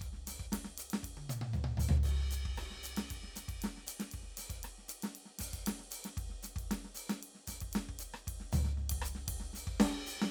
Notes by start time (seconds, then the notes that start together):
0.01 kick, ride
0.13 snare
0.27 snare, hi-hat pedal, ride
0.39 kick
0.51 snare, hi-hat pedal, ride
0.65 snare
0.78 hi-hat pedal, ride
0.90 snare, ride
1.03 kick, hi-hat pedal, ride
1.17 high tom
1.29 hi-hat pedal, mid tom
1.41 mid tom
1.53 floor tom, hi-hat pedal
1.64 mid tom
1.77 floor tom, hi-hat pedal
1.89 floor tom
1.97 kick
2.03 kick, hi-hat pedal, ride
2.20 cross-stick
2.31 hi-hat pedal, ride
2.45 kick
2.56 cross-stick, hi-hat pedal, ride
2.70 snare
2.83 hi-hat pedal, ride
2.97 snare, ride
3.09 kick, hi-hat pedal, ride
3.23 snare
3.36 snare, hi-hat pedal, ride
3.48 kick, ride
3.60 snare, hi-hat pedal, ride
3.77 snare
3.85 kick, hi-hat pedal, ride
4.00 snare, ride
4.10 kick, hi-hat pedal, ride
4.22 snare
4.37 snare, hi-hat pedal, ride
4.50 kick, ride
4.63 cross-stick, ride
4.78 snare
4.88 hi-hat pedal, ride
5.03 snare, ride
5.15 ride
5.25 snare
5.39 kick, snare, hi-hat pedal, ride
5.53 kick, ride
5.64 snare, hi-hat pedal, ride
5.79 snare
5.91 hi-hat pedal, ride
6.04 snare, ride
6.17 kick, ride
6.29 snare
6.43 snare, hi-hat pedal, ride
6.56 kick, ride
6.71 snare, ride
6.84 snare
6.95 hi-hat pedal, ride
7.09 snare, ride
7.20 hi-hat pedal, ride
7.35 snare
7.47 kick, snare, hi-hat pedal, ride
7.61 kick, ride
7.72 snare, hi-hat pedal, ride
7.89 kick
7.99 hi-hat pedal, ride
8.14 cross-stick
8.27 kick, ride
8.40 snare
8.52 floor tom, hi-hat pedal
8.65 snare
8.77 snare
8.90 kick, ride
9.02 cross-stick, hi-hat pedal
9.15 snare
9.28 kick, hi-hat pedal, ride
9.40 snare
9.53 snare, hi-hat pedal
9.67 kick
9.80 snare, ride
10.07 hi-hat pedal
10.22 snare